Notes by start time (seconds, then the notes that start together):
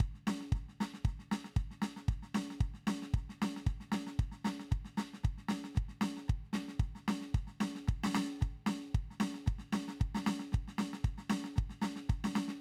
0.00 kick, snare
0.14 snare
0.27 snare
0.41 snare
0.52 kick, snare
0.69 snare
0.80 snare
0.94 snare
1.05 kick, snare
1.19 snare
1.31 snare
1.44 snare
1.56 kick, snare
1.71 snare
1.82 snare
1.96 snare
2.08 kick, snare
2.23 snare
2.35 snare
2.50 snare
2.61 kick, snare
2.74 snare
2.87 snare
3.02 snare
3.14 kick, snare
3.29 snare
3.42 snare
3.56 snare
3.66 kick, snare
3.80 snare
3.92 snare
4.07 snare
4.19 kick, snare
4.32 snare
4.45 snare
4.60 snare
4.71 kick, snare
4.85 snare
4.97 snare
5.13 snare
5.25 kick
5.38 snare
5.49 snare
5.64 snare
5.75 kick, snare
5.88 snare
6.01 snare
6.17 snare
6.28 kick, cross-stick
6.44 snare
6.53 snare
6.68 snare
6.79 kick, snare
6.95 snare
7.08 snare
7.21 snare
7.34 kick, snare
7.47 snare
7.60 snare
7.75 snare
7.88 kick, snare
8.04 snare
8.15 snare
8.31 snare
8.41 kick, snare
8.66 snare
8.95 kick, snare
9.11 snare
9.20 snare
9.34 snare
9.46 kick, snare
9.58 snare
9.73 snare
9.88 snare
10.00 kick, snare
10.15 snare
10.26 snare
10.39 snare
10.52 kick, snare
10.68 snare
10.78 snare
10.93 snare
11.04 kick, snare
11.18 snare
11.30 snare
11.44 snare
11.56 kick, snare
11.70 snare
11.82 snare
11.96 snare
12.09 kick, snare
12.24 snare
12.35 snare
12.48 snare